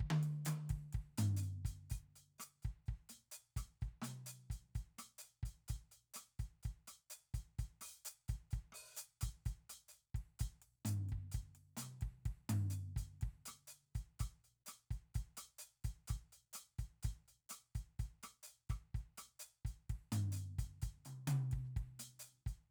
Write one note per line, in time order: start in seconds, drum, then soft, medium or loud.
0.01 kick soft
0.11 high tom medium
0.24 closed hi-hat soft
0.46 hi-hat pedal medium
0.46 open hi-hat medium
0.46 high tom medium
0.70 kick soft
0.70 closed hi-hat soft
0.77 kick soft
0.93 kick soft
0.93 closed hi-hat soft
1.18 closed hi-hat medium
1.18 floor tom loud
1.37 hi-hat pedal medium
1.43 closed hi-hat soft
1.66 closed hi-hat soft
1.66 kick soft
1.91 open hi-hat medium
1.91 kick soft
2.16 closed hi-hat soft
2.39 open hi-hat soft
2.39 cross-stick soft
2.39 snare soft
2.39 hi-hat pedal medium
2.63 closed hi-hat soft
2.63 kick soft
2.87 open hi-hat soft
2.87 kick soft
3.10 closed hi-hat medium
3.10 snare soft
3.32 closed hi-hat soft
3.32 hi-hat pedal medium
3.57 closed hi-hat soft
3.57 kick soft
3.57 cross-stick soft
3.57 snare soft
3.82 closed hi-hat soft
3.82 kick soft
3.88 kick soft
4.02 closed hi-hat medium
4.02 snare soft
4.02 mid tom soft
4.27 closed hi-hat soft
4.27 hi-hat pedal medium
4.51 closed hi-hat soft
4.51 kick soft
4.76 closed hi-hat soft
4.76 kick soft
4.99 closed hi-hat medium
4.99 cross-stick soft
4.99 snare soft
5.19 hi-hat pedal medium
5.24 closed hi-hat soft
5.44 closed hi-hat soft
5.44 kick soft
5.69 closed hi-hat medium
5.69 kick soft
5.69 cross-stick soft
5.76 kick soft
5.92 closed hi-hat soft
6.14 closed hi-hat soft
6.14 cross-stick soft
6.14 snare soft
6.14 hi-hat pedal medium
6.40 closed hi-hat soft
6.40 kick soft
6.64 closed hi-hat soft
6.64 kick soft
6.88 closed hi-hat medium
6.88 cross-stick soft
7.11 hi-hat pedal medium
7.35 closed hi-hat soft
7.35 kick soft
7.59 closed hi-hat soft
7.59 kick soft
7.82 open hi-hat medium
7.82 cross-stick soft
8.06 hi-hat pedal medium
8.29 closed hi-hat soft
8.29 kick soft
8.36 kick soft
8.51 closed hi-hat soft
8.51 kick soft
8.73 open hi-hat medium
8.73 cross-stick soft
8.97 closed hi-hat soft
8.97 hi-hat pedal medium
9.22 closed hi-hat medium
9.22 kick soft
9.22 cross-stick soft
9.29 kick soft
9.46 closed hi-hat soft
9.46 kick soft
9.70 closed hi-hat medium
9.70 cross-stick soft
9.70 snare soft
9.89 hi-hat pedal soft
9.93 closed hi-hat soft
10.15 kick soft
10.15 closed hi-hat soft
10.40 closed hi-hat medium
10.40 kick soft
10.40 snare soft
10.62 closed hi-hat soft
10.86 floor tom medium
10.86 hi-hat pedal medium
10.86 open hi-hat medium
11.09 kick soft
11.09 closed hi-hat soft
11.32 closed hi-hat soft
11.32 kick soft
11.56 closed hi-hat soft
11.77 closed hi-hat medium
11.77 snare soft
11.77 hi-hat pedal medium
11.77 mid tom soft
11.82 cross-stick soft
12.02 kick soft
12.02 closed hi-hat soft
12.26 kick soft
12.26 closed hi-hat soft
12.50 closed hi-hat medium
12.50 floor tom medium
12.71 closed hi-hat soft
12.71 hi-hat pedal medium
12.97 closed hi-hat soft
12.97 kick soft
13.03 kick soft
13.22 kick soft
13.22 closed hi-hat soft
13.46 closed hi-hat medium
13.46 cross-stick soft
13.46 snare soft
13.68 closed hi-hat soft
13.68 hi-hat pedal medium
13.96 closed hi-hat soft
13.96 kick soft
14.20 closed hi-hat medium
14.20 kick soft
14.20 cross-stick soft
14.45 closed hi-hat soft
14.67 closed hi-hat medium
14.67 cross-stick soft
14.67 hi-hat pedal medium
14.91 closed hi-hat soft
14.91 kick soft
15.15 closed hi-hat soft
15.15 kick soft
15.38 closed hi-hat medium
15.38 cross-stick soft
15.59 closed hi-hat soft
15.59 hi-hat pedal medium
15.85 closed hi-hat soft
15.85 kick soft
16.08 closed hi-hat medium
16.08 kick soft
16.08 cross-stick soft
16.17 kick soft
16.33 closed hi-hat soft
16.54 closed hi-hat medium
16.54 cross-stick soft
16.54 snare soft
16.54 hi-hat pedal medium
16.79 closed hi-hat soft
16.79 kick soft
17.03 closed hi-hat medium
17.03 kick soft
17.03 snare soft
17.11 kick soft
17.29 closed hi-hat soft
17.50 closed hi-hat medium
17.50 cross-stick soft
17.50 hi-hat pedal medium
17.75 closed hi-hat soft
17.75 kick soft
18.00 closed hi-hat soft
18.00 kick soft
18.06 kick soft
18.24 closed hi-hat medium
18.24 cross-stick soft
18.24 snare soft
18.44 hi-hat pedal medium
18.48 closed hi-hat soft
18.70 closed hi-hat soft
18.70 kick soft
18.70 cross-stick soft
18.70 snare soft
18.76 kick soft
18.95 closed hi-hat soft
18.95 kick soft
19.01 kick soft
19.18 closed hi-hat medium
19.18 cross-stick soft
19.18 snare soft
19.40 closed hi-hat soft
19.40 hi-hat pedal medium
19.66 closed hi-hat soft
19.66 kick soft
19.71 kick soft
19.90 kick soft
19.90 closed hi-hat soft
19.96 kick soft
20.13 closed hi-hat medium
20.13 floor tom medium
20.33 hi-hat pedal medium
20.37 closed hi-hat soft
20.59 closed hi-hat soft
20.59 kick soft
20.65 kick soft
20.82 closed hi-hat soft
20.82 kick soft
21.06 closed hi-hat soft
21.06 mid tom medium
21.28 hi-hat pedal medium
21.28 mid tom loud
21.28 open hi-hat medium
21.52 kick soft
21.52 closed hi-hat soft
21.59 kick soft
21.65 snare soft
21.77 kick soft
21.77 closed hi-hat soft
22.00 closed hi-hat medium
22.00 snare soft
22.20 hi-hat pedal medium
22.25 closed hi-hat soft
22.47 closed hi-hat soft
22.47 kick soft